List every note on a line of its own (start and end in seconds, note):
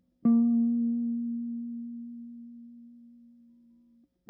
0.26 3.11 A#3